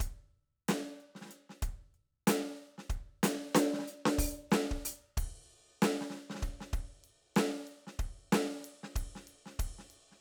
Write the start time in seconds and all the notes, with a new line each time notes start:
0.01 kick, closed hi-hat
0.69 snare, closed hi-hat
0.99 snare, closed hi-hat
1.16 snare
1.22 snare
1.29 snare, closed hi-hat
1.50 snare
1.63 kick, closed hi-hat
1.95 closed hi-hat
2.28 closed hi-hat, snare
2.60 closed hi-hat
2.79 snare
2.90 kick, closed hi-hat
3.24 closed hi-hat, snare
3.56 closed hi-hat, snare
3.74 snare
3.80 snare
3.83 snare
3.88 closed hi-hat, snare
4.06 snare
4.19 open hi-hat, kick
4.52 snare, hi-hat pedal
4.72 kick
4.86 closed hi-hat
5.18 kick, ride
5.83 snare, ride
6.02 snare
6.11 snare, ride
6.14 snare
6.17 snare
6.31 snare
6.35 snare
6.39 snare
6.42 kick, snare, ride
6.61 snare
6.74 kick, ride
7.05 ride
7.37 snare, ride
7.68 ride
7.88 snare
8.00 kick, ride
8.33 snare, ride
8.55 snare
8.61 snare
8.65 ride
8.84 snare
8.96 kick, ride
9.16 snare
9.19 snare
9.28 ride
9.47 snare
9.49 snare
9.60 kick, ride
9.79 snare
9.91 ride
10.12 snare